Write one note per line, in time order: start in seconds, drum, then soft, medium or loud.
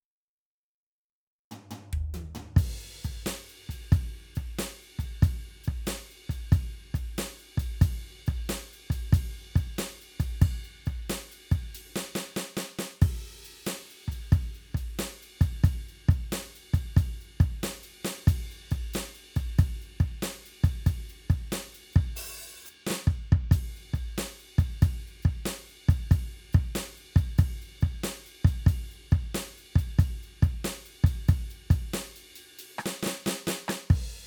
1.51 floor tom loud
1.71 floor tom loud
1.93 mid tom loud
2.14 high tom loud
2.35 floor tom loud
2.56 kick loud
2.56 ride loud
2.56 crash loud
2.81 ride soft
3.04 kick medium
3.04 ride medium
3.26 snare loud
3.26 ride loud
3.49 ride medium
3.69 kick medium
3.69 ride medium
3.92 kick loud
3.92 ride medium
4.35 kick medium
4.35 ride medium
4.59 snare loud
4.59 ride loud
4.82 ride soft
4.99 kick medium
4.99 ride medium
5.22 kick loud
5.22 ride loud
5.64 kick medium
5.64 ride medium
5.87 snare loud
5.87 ride loud
6.10 ride soft
6.29 kick medium
6.29 ride medium
6.52 kick loud
6.52 ride medium
6.94 kick medium
6.94 ride medium
7.18 snare loud
7.18 ride loud
7.39 ride soft
7.57 kick loud
7.57 ride loud
7.81 kick loud
7.81 ride loud
8.26 kick loud
8.26 ride medium
8.49 snare loud
8.49 ride loud
8.73 ride medium
8.90 kick medium
8.90 ride loud
9.13 kick loud
9.13 ride loud
9.37 ride soft
9.56 kick loud
9.56 ride medium
9.78 snare loud
9.78 ride loud
10.01 ride medium
10.20 kick medium
10.20 ride loud
10.42 kick loud
10.42 ride bell loud
10.64 ride soft
10.86 kick medium
10.86 ride medium
11.10 snare loud
11.10 ride loud
11.32 ride medium
11.51 kick loud
11.51 ride medium
11.75 ride loud
11.96 snare loud
12.15 snare loud
12.36 snare loud
12.57 snare loud
12.79 snare loud
13.02 kick loud
13.02 crash loud
13.45 ride medium
13.66 snare loud
13.66 ride loud
13.90 ride medium
14.08 kick medium
14.08 ride medium
14.32 kick loud
14.32 ride medium
14.54 ride soft
14.74 kick medium
14.74 ride medium
14.99 snare loud
14.99 ride loud
15.22 ride medium
15.41 kick loud
15.41 ride medium
15.64 kick loud
15.64 ride loud
15.88 ride soft
16.09 kick loud
16.09 ride medium
16.32 snare loud
16.32 ride loud
16.55 ride medium
16.74 kick loud
16.74 ride medium
16.97 kick loud
16.97 ride loud
17.21 ride soft
17.40 kick loud
17.40 ride medium
17.63 snare loud
17.63 ride loud
17.83 ride medium
18.05 snare loud
18.05 ride loud
18.27 kick loud
18.27 ride loud
18.51 ride soft
18.71 kick medium
18.71 ride medium
18.94 snare loud
18.94 ride loud
19.15 ride medium
19.36 kick loud
19.36 ride medium
19.59 kick loud
19.59 ride loud
19.81 ride soft
20.00 kick loud
20.00 ride soft
20.22 snare loud
20.22 ride loud
20.46 ride medium
20.64 kick loud
20.64 ride medium
20.86 kick loud
20.86 ride loud
21.09 ride medium
21.30 kick loud
21.30 ride medium
21.52 snare loud
21.52 ride loud
21.74 ride medium
21.93 kick loud
21.93 ride soft
22.16 open hi-hat loud
22.16 ride loud
22.65 hi-hat pedal loud
22.87 snare loud
22.90 snare loud
23.07 kick loud
23.32 kick loud
23.51 kick loud
23.51 ride loud
23.76 ride soft
23.94 kick medium
23.94 ride medium
24.18 snare loud
24.18 ride loud
24.40 ride soft
24.58 kick loud
24.58 ride medium
24.82 kick loud
24.82 ride loud
25.07 ride soft
25.22 kick loud
25.22 ride soft
25.46 snare loud
25.46 ride loud
25.69 ride soft
25.89 kick loud
25.89 ride medium
26.11 kick loud
26.11 ride loud
26.53 kick loud
26.53 ride medium
26.75 snare loud
26.75 ride loud
26.97 ride soft
27.16 kick loud
27.16 ride medium
27.38 kick loud
27.38 ride loud
27.62 ride soft
27.81 kick loud
27.81 ride soft
28.04 snare loud
28.04 ride loud
28.26 ride medium
28.45 kick loud
28.45 ride medium
28.66 kick loud
28.66 ride loud
28.91 ride soft
29.11 kick loud
29.11 ride soft
29.35 snare loud
29.35 ride loud
29.58 ride soft
29.76 kick loud
29.76 ride medium
29.99 kick loud
29.99 ride loud
30.23 ride soft
30.43 kick loud
30.43 ride medium
30.64 snare loud
30.64 ride loud
30.85 ride medium
31.04 kick loud
31.04 ride medium
31.28 kick loud
31.28 ride loud
31.50 ride medium
31.70 kick loud
31.70 ride loud
31.93 snare loud
31.93 ride loud
32.16 ride medium
32.35 ride loud
32.59 ride loud
32.78 cross-stick medium
32.86 snare loud
33.03 snare loud
33.06 snare loud
33.26 snare loud
33.47 snare loud
33.68 cross-stick medium
33.68 snare loud
33.90 kick loud
33.90 crash loud